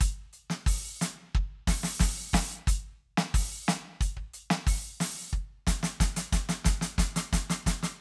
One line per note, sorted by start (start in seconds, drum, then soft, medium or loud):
0.01 closed hi-hat loud
0.01 kick loud
0.33 closed hi-hat soft
0.50 snare loud
0.67 open hi-hat loud
0.67 kick loud
0.99 closed hi-hat loud
0.99 snare loud
0.99 hi-hat pedal soft
1.35 kick loud
1.68 open hi-hat loud
1.68 kick loud
1.68 snare loud
1.84 open hi-hat loud
1.84 snare loud
2.00 open hi-hat loud
2.00 kick loud
2.00 snare loud
2.34 open hi-hat loud
2.34 kick loud
2.34 snare loud
2.68 closed hi-hat loud
2.68 kick loud
3.18 snare loud
3.34 open hi-hat loud
3.34 kick loud
3.67 closed hi-hat loud
3.67 snare loud
3.67 hi-hat pedal soft
4.01 closed hi-hat medium
4.01 kick loud
4.17 kick medium
4.34 closed hi-hat medium
4.51 snare loud
4.67 open hi-hat loud
4.67 kick loud
5.01 open hi-hat loud
5.01 snare loud
5.31 kick medium
5.31 hi-hat pedal soft
5.67 closed hi-hat loud
5.67 kick loud
5.67 snare loud
5.83 closed hi-hat loud
5.83 snare loud
6.00 closed hi-hat loud
6.00 kick loud
6.00 snare loud
6.17 closed hi-hat loud
6.17 snare loud
6.33 closed hi-hat loud
6.33 kick loud
6.33 snare loud
6.49 closed hi-hat loud
6.49 snare loud
6.65 closed hi-hat loud
6.65 kick loud
6.65 snare loud
6.82 closed hi-hat loud
6.82 snare loud
6.98 closed hi-hat loud
6.98 kick loud
6.98 snare loud
7.16 closed hi-hat loud
7.16 snare loud
7.33 closed hi-hat loud
7.33 kick loud
7.33 snare loud
7.50 closed hi-hat loud
7.50 snare loud
7.67 closed hi-hat loud
7.67 kick medium
7.67 snare loud
7.83 closed hi-hat loud
7.83 snare loud